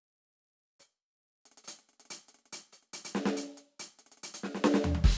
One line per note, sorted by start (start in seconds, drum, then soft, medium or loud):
0.80 hi-hat pedal medium
1.45 closed hi-hat medium
1.52 closed hi-hat soft
1.57 closed hi-hat medium
1.64 closed hi-hat soft
1.68 closed hi-hat loud
1.79 closed hi-hat soft
1.89 closed hi-hat soft
1.93 closed hi-hat soft
2.00 closed hi-hat medium
2.05 closed hi-hat soft
2.10 closed hi-hat loud
2.28 closed hi-hat medium
2.34 closed hi-hat soft
2.39 closed hi-hat soft
2.46 closed hi-hat soft
2.53 closed hi-hat loud
2.73 closed hi-hat medium
2.83 closed hi-hat soft
2.93 closed hi-hat loud
3.05 closed hi-hat loud
3.15 snare loud
3.25 snare loud
3.37 closed hi-hat loud
3.57 closed hi-hat medium
3.79 closed hi-hat loud
3.99 closed hi-hat medium
4.06 closed hi-hat soft
4.12 closed hi-hat medium
4.17 closed hi-hat soft
4.23 closed hi-hat loud
4.34 closed hi-hat loud
4.43 snare medium
4.55 snare medium
4.64 snare loud
4.74 snare loud
4.84 floor tom loud
4.95 floor tom loud
5.04 kick loud
5.04 crash loud